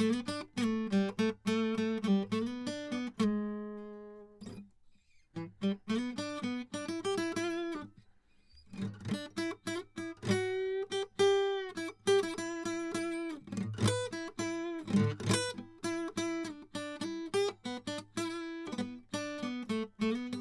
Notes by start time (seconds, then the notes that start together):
0.00 A3
0.15 B3
0.58 A3
0.93 G3
1.20 A3
1.48 A3
1.79 A3
2.05 G3
2.33 A3
2.47 B3
2.67 D4
2.93 B3
3.20 G#3
5.37 E3
5.64 G3
5.91 B3
6.19 D4
6.45 B3
6.75 D4
6.90 E4
7.06 G4
7.18 E4
7.37 E4
7.73 D4
9.15 D4
9.39 E4
9.68 E4
9.99 E4
10.32 F#4
10.93 G4
11.20 G4
11.78 E4
12.08 G4
12.20 E4
12.39 E4
12.66 E4
12.96 E4
13.30 D4
13.64 A2
13.81 A#2
13.87 B4
14.14 E4
14.40 E4
14.98 A2 D3
15.24 A#2
15.31 E4
15.35 B4
15.55 E4
15.85 E4
16.18 E4
16.46 D4
16.76 D4
17.02 E4
17.34 G4
17.66 B3
17.88 D4
18.18 E4
18.79 B3
19.14 D4
19.44 B3
19.70 A3
20.02 A3
20.17 B3